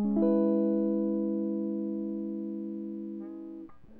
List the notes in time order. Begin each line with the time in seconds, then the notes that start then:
0.00 G#3
0.05 C#4
0.17 E4
0.23 B4